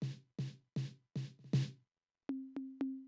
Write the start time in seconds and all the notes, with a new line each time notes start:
0.02 snare
0.39 snare
0.76 snare
1.16 snare
1.39 snare
1.44 snare
1.53 snare
2.29 high tom
2.56 high tom
2.81 high tom